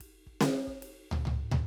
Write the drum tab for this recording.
RD |x--x--x-----|
SD |---o--------|
T1 |--------oo-o|
FT |--------oo-o|
BD |g-g--g------|